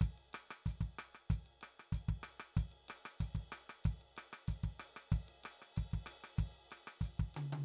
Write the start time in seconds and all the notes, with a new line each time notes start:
0.01 kick, hi-hat pedal, ride
0.18 ride
0.33 cross-stick, ride
0.51 cross-stick
0.66 kick, hi-hat pedal, ride
0.81 kick, ride
0.99 cross-stick, ride
1.15 cross-stick
1.30 kick, hi-hat pedal, ride
1.46 ride
1.61 cross-stick, ride
1.80 cross-stick
1.92 kick, hi-hat pedal, ride
2.09 kick, ride
2.23 cross-stick, ride
2.40 cross-stick
2.57 kick, hi-hat pedal, ride
2.72 ride
2.89 cross-stick, ride
3.05 cross-stick
3.20 kick, hi-hat pedal, ride
3.35 kick, ride
3.52 cross-stick, ride
3.70 cross-stick
3.85 kick, hi-hat pedal, ride
4.01 ride
4.17 cross-stick, ride
4.33 cross-stick
4.48 kick, hi-hat pedal, ride
4.64 kick, ride
4.80 cross-stick, ride
4.96 cross-stick
5.11 kick, hi-hat pedal, ride
5.28 ride
5.44 cross-stick, ride
5.62 cross-stick
5.76 kick, hi-hat pedal, ride
5.92 kick, ride
6.06 cross-stick, ride
6.24 cross-stick
6.37 kick, hi-hat pedal, ride
6.55 ride
6.71 cross-stick, ride
6.87 cross-stick
7.01 kick, hi-hat pedal, ride
7.18 kick, ride
7.35 high tom, ride
7.53 high tom